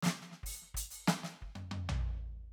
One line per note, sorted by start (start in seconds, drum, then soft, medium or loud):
0.02 snare medium
0.06 snare loud
0.21 snare soft
0.31 snare soft
0.43 open hi-hat medium
0.43 kick soft
0.54 hi-hat pedal medium
0.61 snare soft
0.74 closed hi-hat loud
0.74 kick soft
0.90 hi-hat pedal medium
1.07 snare loud
1.23 snare medium
1.42 kick soft
1.55 closed hi-hat soft
1.55 high tom medium
1.71 high tom loud
1.89 floor tom loud